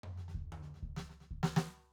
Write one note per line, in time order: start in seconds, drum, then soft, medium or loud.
0.07 floor tom medium
0.18 snare soft
0.29 snare soft
0.35 kick soft
0.53 high tom medium
0.63 snare soft
0.75 snare soft
0.83 kick soft
0.97 snare medium
1.10 snare soft
1.21 snare soft
1.31 kick soft
1.44 snare medium
1.57 snare medium